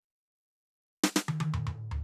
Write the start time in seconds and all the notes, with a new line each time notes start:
1.04 snare
1.09 hi-hat pedal
1.16 snare
1.28 high tom
1.40 high tom
1.54 mid tom
1.67 mid tom
1.91 floor tom